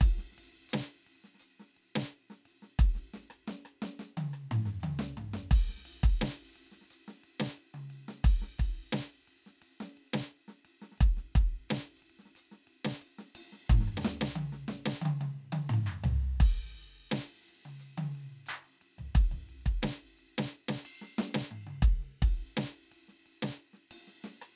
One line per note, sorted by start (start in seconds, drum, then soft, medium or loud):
0.01 kick loud
0.01 ride medium
0.07 hi-hat pedal soft
0.18 snare soft
0.32 snare soft
0.38 ride medium
0.69 hi-hat pedal medium
0.69 ride medium
0.73 snare loud
1.07 ride soft
1.15 ride soft
1.24 snare soft
1.35 snare soft
1.40 hi-hat pedal medium
1.40 ride soft
1.60 snare soft
1.77 ride soft
1.95 snare loud
2.01 hi-hat pedal medium
2.12 ride soft
2.30 snare medium
2.45 ride medium
2.62 snare soft
2.79 kick loud
2.79 ride medium
2.95 snare soft
3.14 snare medium
3.30 cross-stick medium
3.47 snare medium
3.47 hi-hat pedal soft
3.65 cross-stick medium
3.82 snare loud
3.99 snare medium
4.17 hi-hat pedal medium
4.17 high tom loud
4.33 cross-stick medium
4.51 mid tom loud
4.65 snare medium
4.81 hi-hat pedal soft
4.81 high tom loud
4.99 snare loud
5.17 mid tom loud
5.34 snare medium
5.51 kick loud
5.51 crash medium
5.69 snare soft
5.77 snare soft
5.85 ride medium
6.03 kick loud
6.21 snare loud
6.21 ride medium
6.56 ride medium
6.67 ride soft
6.72 snare soft
6.81 snare soft
6.90 hi-hat pedal medium
6.90 ride medium
7.08 snare medium
7.24 ride medium
7.40 snare loud
7.50 hi-hat pedal medium
7.58 ride medium
7.74 high tom medium
7.90 ride medium
8.08 snare medium
8.23 kick loud
8.23 crash medium
8.42 snare soft
8.59 kick medium
8.59 ride medium
8.92 snare loud
8.92 hi-hat pedal medium
8.92 ride medium
9.28 ride soft
9.36 ride soft
9.46 snare soft
9.62 ride medium
9.71 hi-hat pedal soft
9.80 snare medium
9.97 ride soft
10.13 snare loud
10.31 ride soft
10.48 snare medium
10.65 ride medium
10.82 snare medium
10.98 kick loud
10.98 ride soft
11.17 snare soft
11.35 kick loud
11.35 ride soft
11.69 snare loud
11.69 hi-hat pedal medium
11.69 ride medium
11.97 hi-hat pedal soft
12.02 ride soft
12.10 ride soft
12.19 snare soft
12.25 snare soft
12.35 hi-hat pedal medium
12.35 ride soft
12.51 snare soft
12.67 ride medium
12.85 snare loud
12.99 hi-hat pedal medium
12.99 ride medium
13.19 snare medium
13.35 ride loud
13.52 snare soft
13.70 kick loud
13.70 mid tom loud
13.81 snare medium
13.87 cross-stick soft
13.97 snare medium
14.05 snare loud
14.21 snare loud
14.36 high tom loud
14.52 snare medium
14.68 snare loud
14.86 snare loud
15.01 high tom loud
15.05 high tom loud
15.21 high tom loud
15.52 hi-hat pedal soft
15.52 high tom loud
15.69 mid tom loud
15.74 mid tom medium
15.86 percussion medium
16.04 floor tom loud
16.40 kick loud
16.40 crash medium
16.75 ride soft
17.10 snare loud
17.10 hi-hat pedal medium
17.10 ride medium
17.48 ride soft
17.65 high tom medium
17.80 hi-hat pedal medium
17.80 ride soft
17.98 high tom loud
18.15 ride soft
18.46 percussion loud
18.46 hi-hat pedal medium
18.46 ride medium
18.75 hi-hat pedal soft
18.81 ride medium
18.98 floor tom medium
19.15 kick loud
19.15 ride medium
19.31 floor tom soft
19.49 ride soft
19.66 kick medium
19.82 snare loud
19.82 ride medium
20.19 ride bell soft
20.38 snare loud
20.43 hi-hat pedal medium
20.55 ride soft
20.68 snare loud
20.85 ride bell medium
21.01 snare medium
21.18 snare loud
21.18 hi-hat pedal soft
21.34 snare loud
21.51 mid tom medium
21.67 high tom medium
21.82 kick loud
21.82 crash medium
22.00 high tom soft
22.22 kick loud
22.22 ride medium
22.57 snare loud
22.57 hi-hat pedal medium
22.57 ride medium
22.92 ride medium
23.08 snare soft
23.26 ride soft
23.42 snare loud
23.57 ride soft
23.73 snare soft
23.91 ride loud
24.07 snare soft
24.24 snare medium
24.41 cross-stick medium